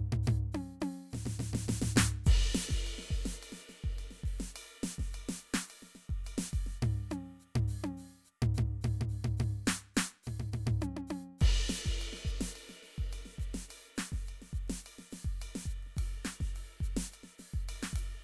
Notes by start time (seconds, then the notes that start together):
0.12 floor tom
0.23 hi-hat pedal
0.27 floor tom
0.52 hi-hat pedal, high tom
0.80 hi-hat pedal, high tom
1.10 floor tom, hi-hat pedal
1.14 snare
1.25 snare, floor tom
1.39 snare, floor tom, hi-hat pedal
1.53 snare, floor tom
1.65 snare, floor tom, hi-hat pedal
1.81 snare, floor tom
1.95 snare, hi-hat pedal, floor tom
2.24 kick, hi-hat pedal, crash, ride
2.52 snare, hi-hat pedal
2.69 kick, snare
2.82 hi-hat pedal
2.86 ride bell
2.98 snare
3.10 kick, hi-hat pedal, ride
3.25 snare, ride
3.41 hi-hat pedal, ride bell
3.52 snare
3.68 snare, hi-hat pedal, ride
3.82 kick, ride
3.98 hi-hat pedal, ride bell
4.10 snare
4.23 kick, hi-hat pedal, ride
4.39 snare, ride
4.55 hi-hat pedal, ride bell
4.81 snare, hi-hat pedal, ride
4.98 kick, snare
5.11 hi-hat pedal, ride bell
5.29 snare
5.39 hi-hat pedal, ride bell
5.54 snare
5.67 hi-hat pedal, ride bell
5.82 snare
5.94 snare, hi-hat pedal, ride bell
6.09 kick, ride
6.24 hi-hat pedal, ride bell
6.38 snare
6.52 kick, hi-hat pedal, ride bell
6.66 snare
6.81 floor tom, hi-hat pedal
7.10 closed hi-hat, hi-hat pedal, high tom
7.40 hi-hat pedal
7.55 floor tom
7.68 hi-hat pedal
7.84 open hi-hat, high tom
7.97 hi-hat pedal
8.25 hi-hat pedal
8.42 floor tom
8.54 floor tom, hi-hat pedal
8.81 floor tom, hi-hat pedal
9.01 floor tom
9.09 hi-hat pedal
9.24 floor tom
9.37 floor tom, hi-hat pedal
9.65 snare, hi-hat pedal
9.94 snare, hi-hat pedal
10.23 hi-hat pedal
10.27 floor tom
10.39 floor tom
10.52 floor tom, hi-hat pedal
10.67 floor tom
10.81 hi-hat pedal, high tom
10.96 high tom
11.07 hi-hat pedal, high tom
11.38 kick, hi-hat pedal, ride
11.67 snare, hi-hat pedal
11.84 kick, snare
11.98 hi-hat pedal, ride bell
12.12 snare
12.25 kick, hi-hat pedal, ride
12.40 snare, ride
12.55 hi-hat pedal, ride bell
12.69 snare
12.82 snare, hi-hat pedal, ride
12.96 kick, ride
13.11 hi-hat pedal, ride bell
13.25 snare
13.38 kick, hi-hat pedal, ride
13.54 snare, ride
13.69 hi-hat pedal, ride bell
13.95 snare, hi-hat pedal, ride bell
14.12 kick, snare
14.25 hi-hat pedal, ride bell
14.42 snare
14.53 kick, hi-hat pedal, ride
14.68 snare, ride
14.83 hi-hat pedal, ride bell
14.98 snare
15.10 snare, hi-hat pedal, ride
15.24 kick, ride
15.40 hi-hat pedal, ride bell
15.55 snare
15.65 kick, hi-hat pedal, ride
15.82 snare, ride
15.96 kick, hi-hat pedal, ride
16.24 snare, hi-hat pedal, ride
16.40 kick, snare
16.54 hi-hat pedal, ride
16.80 kick, hi-hat pedal
16.85 ride
16.96 snare, ride
17.11 hi-hat pedal, ride bell
17.23 snare
17.38 snare, hi-hat pedal, ride
17.53 kick, ride
17.68 hi-hat pedal, ride bell
17.82 snare
17.93 kick, hi-hat pedal, ride